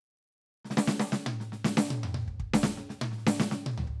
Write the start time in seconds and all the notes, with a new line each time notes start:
0.64 snare
0.70 snare
0.77 snare
0.87 snare
0.99 snare
1.12 snare
1.26 high tom
1.40 snare
1.52 snare
1.64 snare
1.77 snare
1.90 high tom
2.03 mid tom
2.14 high tom
2.28 kick
2.40 kick
2.53 snare
2.63 snare
2.77 snare
2.89 snare
3.01 high tom
3.12 snare
3.17 snare
3.21 snare
3.27 snare
3.40 snare
3.51 snare
3.66 high tom
3.78 floor tom
3.87 kick